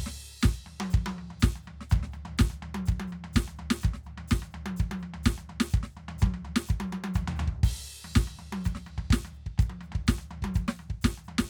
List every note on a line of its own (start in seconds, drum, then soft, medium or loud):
0.07 snare medium
0.42 snare loud
0.42 hi-hat pedal medium
0.46 kick loud
0.67 floor tom medium
0.81 high tom loud
0.91 kick loud
0.91 floor tom medium
0.91 hi-hat pedal medium
1.07 high tom loud
1.19 floor tom soft
1.31 floor tom medium
1.41 kick loud
1.41 snare loud
1.41 hi-hat pedal medium
1.56 floor tom soft
1.63 hi-hat pedal soft
1.68 floor tom medium
1.81 snare soft
1.90 kick loud
1.90 floor tom loud
1.90 hi-hat pedal medium
2.04 snare soft
2.13 floor tom medium
2.13 hi-hat pedal soft
2.26 floor tom medium
2.39 kick loud
2.39 snare loud
2.39 hi-hat pedal medium
2.51 floor tom medium
2.63 floor tom medium
2.75 high tom loud
2.86 kick loud
2.86 floor tom medium
2.86 hi-hat pedal medium
3.00 high tom loud
3.08 hi-hat pedal soft
3.13 floor tom medium
3.25 floor tom medium
3.34 kick loud
3.34 snare loud
3.34 hi-hat pedal medium
3.48 floor tom medium
3.56 floor tom medium
3.56 hi-hat pedal soft
3.71 snare loud
3.81 kick loud
3.81 floor tom medium
3.81 hi-hat pedal medium
3.94 snare soft
4.04 floor tom soft
4.04 hi-hat pedal soft
4.18 floor tom medium
4.28 snare loud
4.28 hi-hat pedal medium
4.33 kick loud
4.43 floor tom medium
4.51 floor tom medium
4.51 hi-hat pedal soft
4.67 high tom loud
4.77 kick loud
4.77 floor tom medium
4.77 hi-hat pedal medium
4.92 high tom loud
5.00 hi-hat pedal soft
5.04 floor tom medium
5.14 floor tom medium
5.24 kick loud
5.24 snare loud
5.24 hi-hat pedal medium
5.38 floor tom medium
5.50 floor tom medium
5.61 snare loud
5.71 kick loud
5.71 hi-hat pedal medium
5.75 floor tom medium
5.84 snare medium
5.93 hi-hat pedal soft
5.97 floor tom medium
6.09 floor tom medium
6.19 hi-hat pedal medium
6.19 high tom loud
6.23 kick loud
6.34 floor tom medium
6.45 floor tom medium
6.57 snare loud
6.67 kick loud
6.67 floor tom medium
6.67 hi-hat pedal medium
6.81 high tom loud
6.88 hi-hat pedal soft
6.93 high tom loud
7.04 high tom loud
7.15 kick medium
7.15 floor tom medium
7.15 hi-hat pedal medium
7.28 floor tom loud
7.36 floor tom loud
7.36 hi-hat pedal soft
7.48 kick medium
7.64 kick loud
7.64 hi-hat pedal medium
7.64 crash loud
7.64 crash medium
7.87 hi-hat pedal soft
8.05 floor tom medium
8.15 kick loud
8.15 snare loud
8.15 hi-hat pedal medium
8.28 floor tom soft
8.38 floor tom medium
8.38 hi-hat pedal soft
8.53 high tom loud
8.65 kick medium
8.65 floor tom medium
8.65 hi-hat pedal loud
8.76 snare medium
8.86 floor tom medium
8.86 hi-hat pedal soft
8.98 kick medium
8.98 floor tom medium
9.11 kick loud
9.11 snare loud
9.11 hi-hat pedal medium
9.25 floor tom medium
9.34 hi-hat pedal soft
9.47 kick medium
9.59 kick loud
9.59 floor tom soft
9.59 hi-hat pedal medium
9.70 high tom medium
9.81 floor tom medium
9.81 hi-hat pedal soft
9.93 kick medium
9.93 floor tom medium
10.08 kick loud
10.08 snare loud
10.08 hi-hat pedal medium
10.19 floor tom medium
10.29 floor tom medium
10.29 hi-hat pedal soft
10.43 kick medium
10.43 high tom loud
10.55 kick loud
10.55 floor tom soft
10.55 hi-hat pedal medium
10.69 snare loud
10.76 floor tom soft
10.76 hi-hat pedal soft
10.90 kick medium
11.02 kick medium
11.02 snare loud
11.02 hi-hat pedal medium
11.18 floor tom soft
11.24 hi-hat pedal soft
11.29 floor tom medium
11.39 kick medium
11.39 snare loud